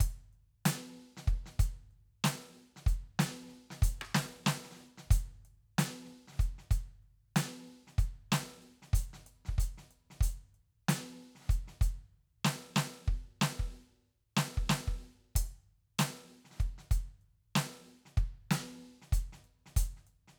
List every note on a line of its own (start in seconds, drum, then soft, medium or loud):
0.01 kick medium
0.01 closed hi-hat loud
0.34 closed hi-hat soft
0.66 closed hi-hat loud
0.66 snare loud
0.97 closed hi-hat soft
1.18 snare medium
1.28 kick medium
1.28 closed hi-hat soft
1.47 snare soft
1.60 closed hi-hat medium
1.60 kick medium
1.92 closed hi-hat soft
2.25 closed hi-hat loud
2.25 snare loud
2.77 snare soft
2.87 closed hi-hat medium
2.87 kick medium
3.20 closed hi-hat medium
3.20 snare loud
3.49 snare soft
3.49 closed hi-hat soft
3.71 snare medium
3.83 closed hi-hat loud
3.83 kick medium
4.02 cross-stick medium
4.15 snare loud
4.47 snare loud
4.65 snare soft
4.71 snare soft
4.78 snare soft
4.98 snare soft
5.07 kick soft
5.11 closed hi-hat loud
5.11 kick loud
5.46 closed hi-hat soft
5.79 closed hi-hat loud
5.79 snare loud
6.06 snare soft
6.06 closed hi-hat soft
6.28 snare soft
6.33 snare soft
6.35 snare soft
6.40 closed hi-hat medium
6.40 kick medium
6.40 snare soft
6.59 snare soft
6.72 closed hi-hat medium
6.72 kick medium
7.03 closed hi-hat soft
7.37 closed hi-hat medium
7.37 snare loud
7.68 closed hi-hat soft
7.88 snare soft
7.99 closed hi-hat medium
7.99 kick medium
8.33 closed hi-hat medium
8.33 snare loud
8.63 closed hi-hat soft
8.83 snare soft
8.94 closed hi-hat medium
8.94 kick medium
9.14 snare soft
9.27 closed hi-hat soft
9.46 kick soft
9.46 snare soft
9.59 closed hi-hat medium
9.59 kick medium
9.78 snare soft
9.91 closed hi-hat soft
10.11 snare soft
10.21 closed hi-hat medium
10.21 kick medium
10.55 closed hi-hat soft
10.89 closed hi-hat loud
10.89 snare loud
11.36 snare soft
11.40 snare soft
11.42 snare soft
11.44 snare soft
11.47 kick medium
11.47 snare soft
11.51 closed hi-hat medium
11.68 snare soft
11.82 closed hi-hat medium
11.82 kick medium
12.45 snare loud
12.77 snare loud
13.08 kick medium
13.42 snare loud
13.60 kick soft
14.37 snare loud
14.58 kick medium
14.70 snare loud
14.88 kick medium
15.36 kick medium
15.36 closed hi-hat loud
15.99 closed hi-hat loud
15.99 snare loud
16.45 snare soft
16.51 snare soft
16.54 snare soft
16.57 kick medium
16.57 snare soft
16.61 closed hi-hat soft
16.79 snare soft
16.92 closed hi-hat medium
16.92 kick medium
17.22 closed hi-hat soft
17.56 closed hi-hat medium
17.56 snare loud
18.06 snare soft
18.18 kick medium
18.18 closed hi-hat soft
18.51 closed hi-hat medium
18.51 snare loud
18.82 closed hi-hat soft
19.02 snare soft
19.13 closed hi-hat medium
19.13 kick medium
19.33 snare soft
19.45 closed hi-hat soft
19.66 snare soft
19.77 closed hi-hat loud
19.77 kick medium
19.97 snare soft
20.08 closed hi-hat soft
20.28 snare soft